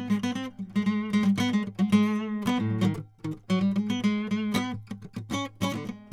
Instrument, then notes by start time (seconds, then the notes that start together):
acoustic guitar
0.00 B3
0.11 G#3
0.24 B3
0.37 C4
0.77 G#3
0.88 G#3
1.15 G#3
1.41 B3
1.54 G#3
1.80 G#3
1.93 G#3
2.47 B3
2.61 A2
2.84 D#3
2.95 D#3
3.25 D#3
3.50 F#3
3.63 G3
3.77 G#3
3.90 B3
4.05 G#3
4.32 A3
4.55 B3
5.34 C#4
5.64 C#4
5.74 B3
5.78 D3
5.87 G#3 B3